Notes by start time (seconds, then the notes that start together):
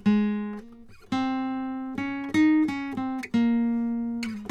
0.07 G#3
0.60 A#3
1.13 C4
1.99 C#4
2.35 D#4
2.70 C#4
2.99 C4
3.35 A#3